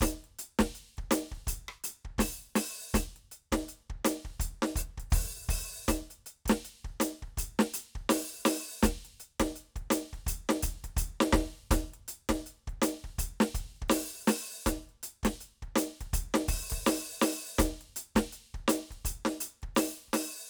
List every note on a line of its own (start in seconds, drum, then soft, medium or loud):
0.01 open hi-hat loud
0.01 kick medium
0.01 snare loud
0.01 hi-hat pedal soft
0.24 closed hi-hat soft
0.39 closed hi-hat loud
0.59 kick medium
0.59 snare loud
0.59 closed hi-hat medium
0.75 closed hi-hat medium
0.97 kick medium
0.97 closed hi-hat soft
1.11 closed hi-hat loud
1.11 snare loud
1.32 kick soft
1.32 closed hi-hat soft
1.47 closed hi-hat loud
1.47 kick medium
1.69 cross-stick medium
1.84 closed hi-hat loud
2.05 kick soft
2.19 open hi-hat loud
2.19 kick medium
2.19 snare loud
2.19 hi-hat pedal soft
2.56 open hi-hat loud
2.56 kick soft
2.56 snare loud
2.94 open hi-hat loud
2.94 kick medium
2.94 snare loud
2.94 hi-hat pedal soft
3.16 closed hi-hat soft
3.32 closed hi-hat medium
3.52 kick medium
3.52 snare loud
3.52 closed hi-hat medium
3.69 closed hi-hat medium
3.90 kick medium
4.05 closed hi-hat loud
4.05 snare loud
4.25 kick soft
4.40 closed hi-hat loud
4.40 kick medium
4.62 snare loud
4.76 open hi-hat loud
4.76 kick medium
4.80 hi-hat pedal medium
4.98 kick soft
4.98 closed hi-hat medium
5.11 open hi-hat loud
5.11 kick loud
5.11 hi-hat pedal soft
5.49 open hi-hat loud
5.49 kick medium
5.88 open hi-hat loud
5.88 kick medium
5.88 snare loud
5.88 hi-hat pedal soft
6.11 closed hi-hat medium
6.26 closed hi-hat medium
6.46 kick medium
6.46 snare loud
6.46 closed hi-hat loud
6.65 closed hi-hat medium
6.85 kick medium
7.00 closed hi-hat loud
7.00 snare loud
7.23 kick soft
7.38 closed hi-hat loud
7.38 kick medium
7.59 snare loud
7.74 closed hi-hat loud
7.95 kick medium
8.10 open hi-hat loud
8.10 snare loud
8.39 kick soft
8.46 open hi-hat loud
8.46 snare loud
8.83 open hi-hat loud
8.83 kick medium
8.83 snare loud
8.83 hi-hat pedal medium
9.05 closed hi-hat medium
9.20 closed hi-hat medium
9.40 kick medium
9.40 snare loud
9.40 closed hi-hat medium
9.56 closed hi-hat medium
9.76 kick medium
9.76 closed hi-hat soft
9.91 closed hi-hat loud
9.91 snare loud
10.13 kick soft
10.13 closed hi-hat soft
10.27 closed hi-hat loud
10.27 kick medium
10.49 snare loud
10.63 closed hi-hat loud
10.63 kick medium
10.84 kick soft
10.84 closed hi-hat medium
10.97 closed hi-hat loud
10.97 kick medium
10.97 hi-hat pedal medium
11.21 snare loud
11.33 kick loud
11.33 snare loud
11.71 open hi-hat loud
11.71 kick loud
11.71 snare loud
11.71 hi-hat pedal soft
11.94 closed hi-hat soft
12.08 closed hi-hat loud
12.08 kick soft
12.29 kick medium
12.29 snare loud
12.29 closed hi-hat medium
12.46 closed hi-hat medium
12.68 kick medium
12.68 closed hi-hat soft
12.82 closed hi-hat loud
12.82 snare loud
13.04 kick soft
13.19 closed hi-hat loud
13.19 kick medium
13.41 snare loud
13.55 closed hi-hat medium
13.55 kick medium
13.77 closed hi-hat soft
13.82 kick medium
13.89 open hi-hat loud
13.89 snare loud
13.89 hi-hat pedal medium
14.28 open hi-hat loud
14.28 snare loud
14.66 open hi-hat loud
14.66 kick medium
14.66 snare loud
14.66 hi-hat pedal medium
14.89 closed hi-hat soft
15.03 closed hi-hat loud
15.23 kick medium
15.23 snare loud
15.23 closed hi-hat medium
15.41 closed hi-hat medium
15.62 kick soft
15.62 closed hi-hat soft
15.76 closed hi-hat loud
15.76 snare loud
16.01 kick soft
16.01 closed hi-hat medium
16.14 closed hi-hat loud
16.14 kick medium
16.34 snare loud
16.48 open hi-hat loud
16.48 kick medium
16.70 kick medium
16.70 open hi-hat loud
16.81 kick soft
16.87 open hi-hat loud
16.87 snare loud
17.22 open hi-hat loud
17.22 snare loud
17.58 closed hi-hat loud
17.58 kick loud
17.58 snare loud
17.58 hi-hat pedal soft
17.81 closed hi-hat soft
17.96 closed hi-hat loud
18.16 kick medium
18.16 snare loud
18.16 closed hi-hat medium
18.33 closed hi-hat medium
18.54 kick soft
18.54 closed hi-hat soft
18.68 closed hi-hat loud
18.68 snare loud
18.91 kick soft
18.91 closed hi-hat soft
19.05 closed hi-hat loud
19.05 kick medium
19.25 snare loud
19.41 closed hi-hat loud
19.62 kick soft
19.62 closed hi-hat soft
19.75 open hi-hat loud
19.75 snare loud
19.75 hi-hat pedal soft
20.08 kick soft
20.14 open hi-hat loud
20.14 snare loud